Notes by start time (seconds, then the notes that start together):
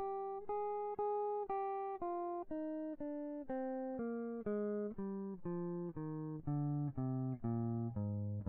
0.00 G4
0.50 G#4
0.99 G#4
1.50 G4
2.02 F4
2.52 D#4
3.01 D4
3.50 C4
4.00 A#3
4.47 G#3
5.00 G3
5.47 F3
5.98 D#3
6.49 D3
6.99 C3
7.46 A#2
7.99 G#2